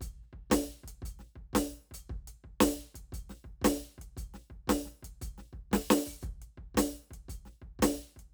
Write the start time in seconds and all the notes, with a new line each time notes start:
0.01 closed hi-hat, kick
0.23 snare
0.33 kick
0.50 closed hi-hat, kick, snare
0.84 kick
0.88 closed hi-hat
1.02 closed hi-hat, kick
1.19 snare
1.36 kick
1.53 closed hi-hat, kick, snare
1.91 closed hi-hat, kick
2.10 kick
2.27 closed hi-hat
2.44 kick
2.61 closed hi-hat, kick, snare
2.95 kick, closed hi-hat
3.12 closed hi-hat, kick
3.30 snare
3.44 kick
3.62 closed hi-hat, kick, snare
3.98 kick, closed hi-hat
4.17 closed hi-hat, kick
4.34 snare
4.50 kick
4.68 closed hi-hat, kick, snare
4.86 snare
4.90 snare
5.03 kick, closed hi-hat
5.22 closed hi-hat, kick
5.38 snare
5.53 kick
5.72 kick, snare
5.90 snare
5.98 snare
6.04 open hi-hat, kick, snare
6.21 kick, hi-hat pedal
6.42 closed hi-hat
6.58 kick
6.75 closed hi-hat, kick, snare
7.11 kick, closed hi-hat
7.29 closed hi-hat, kick
7.46 snare
7.62 kick
7.79 closed hi-hat, kick, snare
8.16 kick, closed hi-hat